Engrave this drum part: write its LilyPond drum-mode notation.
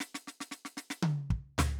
\new DrumStaff \drummode { \time 4/4 \tempo 4 = 114 sn16 sn16 sn16 sn16 sn16 sn16 sn16 sn16 tommh8 bd8 <tomfh sn>4 | }